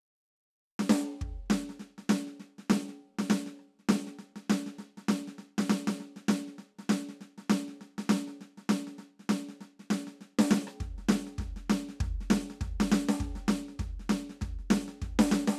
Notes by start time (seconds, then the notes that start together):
0.79 snare
0.89 snare
1.21 kick
1.46 kick
1.50 snare
1.69 snare
1.79 snare
1.98 snare
2.09 snare
2.27 snare
2.40 snare
2.58 snare
2.70 snare
2.88 snare
3.19 snare
3.30 snare
3.46 snare
3.59 cross-stick
3.79 snare
3.89 snare
4.07 snare
4.19 snare
4.36 snare
4.50 snare
4.66 snare
4.78 snare
4.97 snare
5.08 snare
5.27 snare
5.38 snare
5.58 snare
5.70 snare
5.87 snare
6.00 snare
6.16 snare
6.28 snare
6.47 snare
6.58 snare
6.79 snare
6.89 snare
7.09 snare
7.21 snare
7.38 snare
7.50 snare
7.68 snare
7.81 snare
7.98 snare
8.09 snare
8.15 snare
8.27 snare
8.41 snare
8.57 snare
8.69 snare
8.87 snare
8.98 snare
9.19 snare
9.29 snare
9.48 snare
9.61 snare
9.79 snare
9.90 snare
10.07 snare
10.21 snare
10.39 snare
10.51 snare
10.67 cross-stick
10.80 kick, snare
10.98 snare
11.09 snare
11.27 snare
11.38 kick, snare
11.56 snare
11.70 snare
11.89 snare
12.00 kick, snare
12.21 snare
12.30 snare
12.50 snare
12.61 kick, snare
12.80 snare
12.92 snare
13.09 snare
13.20 kick, snare
13.35 snare
13.48 snare
13.68 snare
13.79 kick, snare
13.99 snare
14.09 kick, snare
14.29 snare
14.41 kick, snare
14.59 snare
14.70 snare
14.88 snare
15.02 kick, snare
15.19 snare
15.31 snare
15.47 snare